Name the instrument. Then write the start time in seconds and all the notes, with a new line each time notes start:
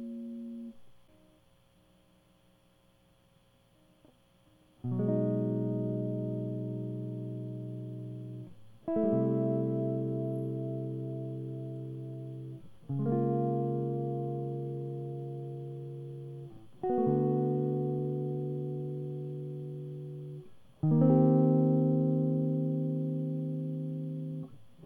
electric guitar
5.06 B2 F#3 G#3 D#4
8.88 E4
8.97 A3
9.04 G3
9.14 C3
12.91 C#3
13.00 G#3
13.06 A#3
13.12 F4
16.84 F#4
16.90 B3
16.98 A3
17.08 D3
20.84 D#3
20.92 A#3
21.02 C4
21.10 G4